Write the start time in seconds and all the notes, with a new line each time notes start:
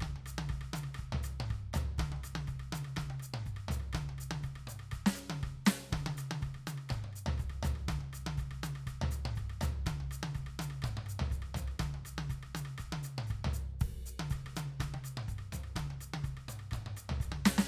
0.01 kick, cross-stick, hi-hat pedal, high tom
0.16 high tom
0.26 cross-stick, hi-hat pedal
0.39 high tom
0.49 kick, cross-stick
0.61 cross-stick
0.74 hi-hat pedal, high tom
0.84 cross-stick
0.95 cross-stick, hi-hat pedal
0.99 kick
1.13 floor tom
1.24 cross-stick, hi-hat pedal
1.40 mid tom
1.46 hi-hat pedal
1.51 kick, cross-stick
1.74 cross-stick, floor tom, hi-hat pedal
1.98 kick, cross-stick, hi-hat pedal, high tom
2.12 high tom
2.17 high tom
2.24 cross-stick, hi-hat pedal
2.36 high tom
2.48 kick, cross-stick, hi-hat pedal
2.60 cross-stick
2.73 hi-hat pedal, high tom
2.85 cross-stick
2.97 kick, cross-stick, hi-hat pedal, high tom
3.10 high tom
3.20 cross-stick, hi-hat pedal
3.34 mid tom
3.46 kick, hi-hat pedal
3.57 cross-stick
3.69 floor tom, hi-hat pedal
3.80 cross-stick
3.93 kick, cross-stick, hi-hat pedal, high tom
4.10 high tom
4.19 cross-stick, hi-hat pedal
4.31 high tom
4.43 kick, cross-stick, hi-hat pedal
4.56 cross-stick
4.68 hi-hat pedal, mid tom
4.80 cross-stick
4.92 kick, cross-stick, hi-hat pedal
5.07 snare
5.15 cross-stick, hi-hat pedal
5.30 high tom
5.43 kick, cross-stick
5.66 snare, hi-hat pedal
5.90 kick, cross-stick, hi-hat pedal, high tom
6.07 high tom
6.18 cross-stick, hi-hat pedal
6.31 high tom
6.41 kick, cross-stick, hi-hat pedal
6.55 cross-stick
6.67 hi-hat pedal, high tom
6.78 cross-stick
6.90 kick, cross-stick, hi-hat pedal, mid tom
7.04 mid tom
7.13 cross-stick, hi-hat pedal
7.27 cross-stick, floor tom
7.38 kick, cross-stick, hi-hat pedal
7.50 cross-stick
7.63 floor tom, hi-hat pedal
7.76 cross-stick
7.89 kick, cross-stick, hi-hat pedal, high tom
8.01 high tom
8.05 high tom
8.13 cross-stick, hi-hat pedal
8.27 high tom
8.38 kick, cross-stick, hi-hat pedal
8.51 cross-stick
8.64 hi-hat pedal, high tom
8.76 cross-stick
8.87 kick, cross-stick, hi-hat pedal
9.02 floor tom
9.11 cross-stick, hi-hat pedal
9.26 mid tom
9.36 kick, cross-stick, hi-hat pedal
9.50 cross-stick
9.61 cross-stick, floor tom, hi-hat pedal
9.86 kick, cross-stick, hi-hat pedal, high tom
10.01 high tom
10.11 cross-stick, hi-hat pedal
10.23 high tom
10.35 kick, cross-stick, hi-hat pedal
10.47 cross-stick
10.60 hi-hat pedal, high tom
10.70 cross-stick
10.82 kick, cross-stick, hi-hat pedal, mid tom
10.97 mid tom
11.07 cross-stick, hi-hat pedal
11.20 floor tom
11.31 kick, cross-stick, hi-hat pedal
11.43 cross-stick
11.55 floor tom, hi-hat pedal
11.68 cross-stick
11.80 kick, cross-stick, hi-hat pedal, high tom
11.95 high tom
11.99 high tom
12.06 cross-stick, hi-hat pedal
12.19 high tom
12.30 kick, cross-stick, hi-hat pedal
12.43 cross-stick
12.55 hi-hat pedal, high tom
12.65 cross-stick
12.78 kick, cross-stick, hi-hat pedal
12.93 high tom
13.03 cross-stick, hi-hat pedal
13.19 mid tom
13.27 kick, cross-stick, hi-hat pedal
13.45 floor tom
13.54 cross-stick, hi-hat pedal
13.80 kick, hi-hat pedal, ride
14.06 hi-hat pedal
14.20 high tom
14.30 kick, cross-stick, hi-hat pedal
14.47 cross-stick
14.56 hi-hat pedal, high tom
14.70 cross-stick
14.80 kick, cross-stick, hi-hat pedal, high tom
14.94 high tom
15.04 cross-stick, hi-hat pedal
15.18 mid tom
15.28 kick, hi-hat pedal
15.39 cross-stick
15.53 floor tom, hi-hat pedal
15.64 cross-stick
15.76 kick, cross-stick, hi-hat pedal, high tom
15.91 high tom
16.01 cross-stick, hi-hat pedal
16.14 high tom
16.24 kick, cross-stick, hi-hat pedal
16.37 cross-stick
16.49 hi-hat pedal, mid tom
16.60 cross-stick
16.72 kick, cross-stick, hi-hat pedal, mid tom
16.87 mid tom
16.97 cross-stick, hi-hat pedal
17.10 floor tom
17.20 kick, cross-stick, hi-hat pedal
17.32 high tom
17.45 snare, hi-hat pedal
17.59 snare